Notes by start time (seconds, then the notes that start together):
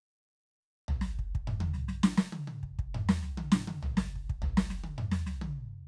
0.89 floor tom
1.02 snare
1.19 kick
1.35 kick
1.48 mid tom
1.61 high tom
1.74 snare
1.89 snare
2.04 snare
2.18 snare
2.33 high tom
2.48 high tom
2.63 kick
2.79 kick
2.95 mid tom
3.09 snare
3.23 snare
3.38 high tom
3.52 snare
3.68 high tom
3.83 floor tom
3.98 snare
4.16 kick
4.30 kick
4.43 floor tom
4.58 snare
4.71 snare
4.84 high tom
4.99 mid tom
5.12 snare
5.27 snare
5.42 high tom